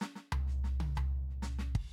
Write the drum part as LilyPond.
\new DrumStaff \drummode { \time 4/4 \tempo 4 = 125 \tuplet 3/2 { <hhp sn>8 sn8 tomfh8 <sn hhp>8 sn8 <tommh hh>8 <hhp tomfh>8 r8 sn8 <sn hhp>8 sn8 <bd cymr>8 } | }